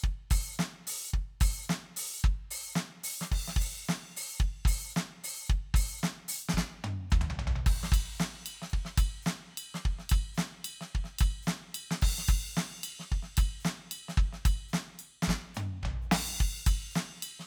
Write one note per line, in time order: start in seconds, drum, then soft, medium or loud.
0.01 kick loud
0.01 hi-hat pedal medium
0.31 open hi-hat loud
0.31 kick loud
0.55 snare loud
0.55 hi-hat pedal soft
0.87 open hi-hat loud
1.10 kick loud
1.10 hi-hat pedal soft
1.41 open hi-hat loud
1.41 kick loud
1.65 hi-hat pedal medium
1.70 snare loud
1.97 open hi-hat loud
2.22 kick loud
2.22 hi-hat pedal medium
2.51 open hi-hat loud
2.73 snare loud
2.73 hi-hat pedal medium
3.04 open hi-hat loud
3.21 snare medium
3.27 hi-hat pedal medium
3.32 kick loud
3.32 crash loud
3.48 snare medium
3.56 kick loud
3.61 open hi-hat loud
3.85 snare loud
3.85 hi-hat pedal medium
4.17 open hi-hat loud
4.38 kick loud
4.38 hi-hat pedal medium
4.65 open hi-hat loud
4.65 kick loud
4.92 snare loud
4.92 hi-hat pedal medium
5.24 open hi-hat loud
5.48 kick loud
5.48 hi-hat pedal soft
5.74 open hi-hat loud
5.74 kick loud
5.99 hi-hat pedal soft
6.03 snare loud
6.28 open hi-hat loud
6.49 snare loud
6.49 hi-hat pedal soft
6.54 kick medium
6.54 snare loud
6.84 high tom loud
7.10 kick loud
7.10 hi-hat pedal soft
7.10 mid tom loud
7.21 mid tom loud
7.30 floor tom loud
7.39 floor tom loud
7.47 floor tom loud
7.56 floor tom loud
7.66 kick loud
7.66 crash medium
7.83 snare medium
7.92 kick loud
7.92 ride bell loud
8.15 hi-hat pedal soft
8.20 snare loud
8.46 ride bell loud
8.62 snare medium
8.70 kick medium
8.70 ride soft
8.85 snare medium
8.98 kick loud
8.98 ride bell loud
9.22 snare loud
9.22 hi-hat pedal soft
9.58 ride bell loud
9.75 snare medium
9.85 kick loud
9.99 snare soft
10.10 kick loud
10.10 ride bell loud
10.35 snare loud
10.35 hi-hat pedal soft
10.65 ride bell loud
10.81 snare medium
10.95 kick medium
11.04 snare soft
11.19 kick loud
11.19 ride bell loud
11.43 hi-hat pedal soft
11.47 snare loud
11.75 ride bell loud
11.91 snare loud
12.02 kick loud
12.02 crash loud
12.18 snare medium
12.28 kick loud
12.28 ride bell medium
12.53 hi-hat pedal soft
12.57 snare loud
12.84 ride bell loud
13.00 snare medium
13.12 kick medium
13.23 snare soft
13.37 kick loud
13.37 ride bell loud
13.60 hi-hat pedal soft
13.65 snare loud
13.91 ride bell loud
14.09 snare medium
14.18 kick loud
14.33 snare medium
14.45 kick loud
14.45 ride bell loud
14.69 hi-hat pedal soft
14.74 snare loud
14.99 ride bell medium
15.22 snare loud
15.28 kick medium
15.28 snare loud
15.55 hi-hat pedal medium
15.55 high tom loud
15.83 kick medium
15.83 floor tom loud
16.02 hi-hat pedal soft
16.12 snare loud
16.12 crash loud
16.40 kick loud
16.52 snare soft
16.57 snare soft
16.67 kick loud
16.67 ride bell loud
16.91 hi-hat pedal soft
16.96 snare loud
17.23 ride bell loud
17.40 snare medium